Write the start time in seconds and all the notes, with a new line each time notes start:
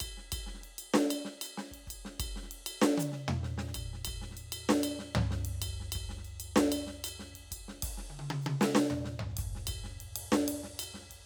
0.01 kick, hi-hat pedal, ride bell
0.18 snare
0.33 kick, ride bell
0.41 kick
0.47 snare
0.55 snare
0.62 snare, ride
0.79 ride bell
0.94 snare
1.11 ride bell
1.25 snare
1.42 hi-hat pedal, ride bell
1.58 snare
1.72 kick, ride
1.88 kick, hi-hat pedal, ride bell
2.05 snare
2.20 kick, ride bell
2.27 kick
2.36 snare
2.44 snare
2.52 ride
2.67 ride bell
2.82 snare
2.98 hi-hat pedal, high tom
3.12 snare
3.29 mid tom
3.44 snare
3.58 snare
3.75 kick, ride bell
3.83 kick
3.85 kick
3.94 snare
4.05 kick, ride bell
4.14 kick
4.22 snare
4.32 snare
4.37 ride bell
4.53 ride bell
4.70 snare
4.82 hi-hat pedal, ride bell
4.99 snare
5.16 floor tom
5.31 snare
5.45 ride
5.55 cross-stick
5.62 kick, ride bell
5.81 snare
5.93 kick, ride bell
6.10 snare
6.18 snare
6.25 ride bell
6.40 ride bell
6.56 snare
6.72 ride bell
6.87 snare
7.05 hi-hat pedal, ride bell
7.20 snare
7.34 kick, ride
7.52 kick, ride bell
7.69 snare
7.83 kick, hi-hat pedal, ride
7.90 kick
7.98 snare
8.10 high tom
8.20 high tom
8.31 high tom
8.42 hi-hat pedal
8.47 high tom
8.62 snare
8.75 snare, hi-hat pedal
8.91 mid tom
9.05 snare
9.20 floor tom
9.29 snare
9.37 kick, hi-hat pedal, ride
9.48 kick
9.50 kick
9.56 snare
9.68 kick, ride bell
9.84 snare
9.90 snare
10.01 ride
10.16 ride
10.33 snare
10.49 ride
10.64 snare
10.80 hi-hat pedal, ride bell
10.95 snare
11.02 snare
11.10 kick, ride